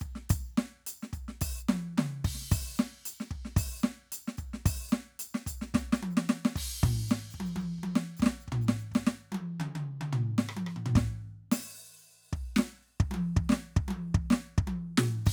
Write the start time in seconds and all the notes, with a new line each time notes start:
0.01 kick, percussion
0.16 snare
0.30 kick, percussion
0.58 snare
0.87 percussion
1.04 snare
1.14 kick, percussion
1.29 snare
1.42 kick, percussion
1.60 percussion
1.70 snare, high tom
1.99 snare, mid tom
2.25 kick, crash
2.35 snare
2.42 snare
2.52 kick, percussion
2.77 snare, percussion
3.06 percussion
3.21 snare
3.32 kick, percussion
3.46 snare
3.57 kick, percussion
3.80 snare, percussion
4.13 percussion
4.29 snare
4.38 kick, percussion
4.54 snare
4.66 kick, percussion
4.90 snare, percussion
5.20 percussion
5.35 snare
5.47 kick, percussion
5.62 snare
5.75 kick, snare, percussion
5.93 snare, percussion
6.04 high tom
6.11 percussion
6.18 snare
6.30 snare
6.46 snare
6.56 kick, crash
6.84 kick, floor tom
7.09 snare, percussion
7.31 kick, percussion
7.41 high tom
7.46 percussion
7.56 kick, high tom, percussion
7.79 kick
7.84 high tom
7.96 snare
8.18 kick, percussion
8.23 snare
8.27 snare
8.41 percussion
8.49 kick
8.53 floor tom
8.62 percussion
8.68 kick, snare
8.80 percussion
8.92 kick, snare, percussion
9.07 snare, percussion
9.33 high tom
9.35 high tom
9.61 mid tom
9.76 mid tom
10.02 mid tom
10.14 floor tom
10.39 snare
10.50 high tom
10.57 high tom
10.67 high tom
10.77 floor tom
10.87 floor tom
10.96 kick, snare
11.52 snare, percussion
12.34 kick
12.57 snare
12.59 snare
13.01 kick
13.12 high tom
13.15 high tom
13.37 kick
13.50 snare
13.53 snare
13.77 kick
13.89 high tom
13.91 high tom
14.15 kick
14.31 snare
14.33 snare
14.59 kick
14.68 high tom
14.98 snare, floor tom
15.27 kick, crash